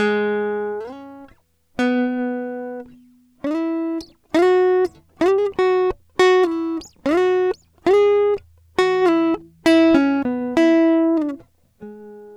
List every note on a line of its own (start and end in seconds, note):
0.00 0.82 G#3
0.82 1.30 C#4
1.80 2.88 B3
3.46 4.06 E4
4.36 4.92 F#4
5.23 5.55 G4
5.61 5.97 F#4
6.21 6.45 F#4
6.45 6.86 E4
7.07 7.58 F#4
7.88 8.42 G#4
8.80 9.07 F#4
9.07 9.41 E4
9.67 10.04 E4
9.96 10.25 C#4
10.28 10.58 B3
10.58 11.41 E4
11.85 12.37 G#3